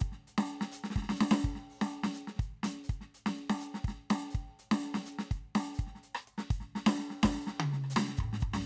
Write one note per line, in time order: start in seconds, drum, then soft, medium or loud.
0.01 closed hi-hat medium
0.01 kick soft
0.08 kick soft
0.12 kick soft
0.12 snare soft
0.28 closed hi-hat soft
0.39 snare loud
0.51 closed hi-hat soft
0.62 snare medium
0.72 closed hi-hat medium
0.72 hi-hat pedal medium
0.84 snare soft
0.91 snare soft
0.96 kick soft
0.96 snare medium
1.03 snare medium
1.10 snare medium
1.16 hi-hat pedal medium
1.21 snare loud
1.32 snare loud
1.38 snare soft
1.38 hi-hat pedal soft
1.45 closed hi-hat medium
1.45 kick soft
1.51 kick soft
1.54 kick soft
1.54 snare soft
1.70 open hi-hat soft
1.82 snare medium
1.82 hi-hat pedal soft
1.94 closed hi-hat soft
2.04 snare medium
2.14 closed hi-hat soft
2.14 hi-hat pedal medium
2.28 snare soft
2.37 kick soft
2.37 snare soft
2.42 closed hi-hat medium
2.42 kick soft
2.64 open hi-hat loud
2.64 snare medium
2.78 snare soft
2.85 hi-hat pedal soft
2.90 closed hi-hat medium
2.90 kick soft
3.02 snare soft
3.15 closed hi-hat medium
3.27 snare medium
3.39 closed hi-hat soft
3.50 snare loud
3.61 closed hi-hat soft
3.61 hi-hat pedal medium
3.75 snare medium
3.85 closed hi-hat medium
3.85 kick soft
3.85 snare medium
4.11 closed hi-hat loud
4.11 snare loud
4.31 hi-hat pedal medium
4.35 closed hi-hat medium
4.35 kick soft
4.42 snare soft
4.49 snare soft
4.60 closed hi-hat soft
4.72 snare loud
4.84 closed hi-hat soft
4.95 snare medium
5.06 hi-hat pedal medium
5.19 snare medium
5.32 closed hi-hat medium
5.32 kick soft
5.32 snare soft
5.55 open hi-hat loud
5.55 snare loud
5.75 hi-hat pedal medium
5.79 closed hi-hat medium
5.79 kick soft
5.87 snare soft
5.96 snare soft
6.04 closed hi-hat soft
6.15 cross-stick medium
6.20 hi-hat pedal soft
6.28 closed hi-hat soft
6.38 snare soft
6.51 closed hi-hat loud
6.51 kick medium
6.57 kick soft
6.57 snare soft
6.61 kick soft
6.76 snare medium
6.87 snare loud
6.92 hi-hat pedal medium
6.99 snare soft
7.11 snare soft
7.23 kick soft
7.23 snare loud
7.23 hi-hat pedal soft
7.31 kick soft
7.31 snare soft
7.41 hi-hat pedal medium
7.48 snare medium
7.60 high tom loud
7.73 snare soft
7.84 cross-stick soft
7.91 hi-hat pedal medium
7.97 snare loud
8.09 snare soft
8.18 kick soft
8.18 hi-hat pedal medium
8.18 mid tom loud
8.27 kick soft
8.34 snare medium
8.41 kick soft
8.41 floor tom medium
8.41 hi-hat pedal medium
8.50 kick soft
8.52 kick soft
8.52 snare loud
8.60 hi-hat pedal medium